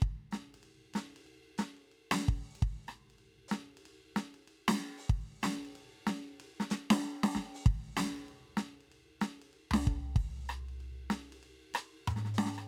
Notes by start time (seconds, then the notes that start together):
0.01 kick, ride
0.31 snare, hi-hat pedal
0.36 ride
0.54 ride
0.63 ride
0.94 snare, hi-hat pedal, ride
1.16 ride
1.27 ride
1.58 snare, hi-hat pedal, ride
1.77 ride
1.92 ride
2.11 open hi-hat, snare
2.29 kick
2.56 ride
2.63 kick
2.87 cross-stick, hi-hat pedal, ride
3.10 ride
3.19 ride
3.48 snare, hi-hat pedal
3.53 ride
3.77 ride
3.86 ride
4.16 snare, hi-hat pedal, ride
4.34 ride
4.48 ride
4.68 snare
4.80 ride
4.98 open hi-hat
5.10 kick, ride
5.41 snare, hi-hat pedal, ride
5.65 ride
5.76 ride
6.07 snare, hi-hat pedal, ride
6.40 ride
6.60 snare
6.71 snare, hi-hat pedal
6.91 snare
7.04 snare, hi-hat pedal
7.24 snare
7.31 hi-hat pedal
7.35 kick, snare
7.54 open hi-hat
7.66 kick, ride
7.96 snare, hi-hat pedal, ride
8.17 ride
8.29 ride
8.57 snare, hi-hat pedal, ride
8.81 ride
8.92 ride
9.21 snare, hi-hat pedal, ride
9.42 ride
9.53 ride
9.71 snare, floor tom
9.76 hi-hat pedal
9.87 kick
10.16 open hi-hat, kick, ride
10.46 cross-stick, hi-hat pedal, ride
10.69 ride
10.81 ride
11.10 snare, hi-hat pedal, ride
11.33 ride
11.43 ride
11.74 cross-stick, hi-hat pedal, ride
12.08 hi-hat pedal, mid tom
12.16 snare
12.25 snare
12.34 hi-hat pedal
12.38 snare
12.46 snare
12.54 hi-hat pedal
12.58 cross-stick